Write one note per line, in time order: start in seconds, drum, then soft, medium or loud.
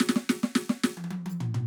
0.03 snare loud
0.03 percussion soft
0.09 snare loud
0.16 snare loud
0.30 snare loud
0.42 snare loud
0.42 percussion soft
0.56 snare loud
0.70 snare loud
0.84 snare loud
0.84 percussion soft
0.97 high tom loud
1.04 high tom loud
1.11 high tom loud
1.26 high tom loud
1.26 percussion medium
1.41 floor tom loud
1.55 floor tom loud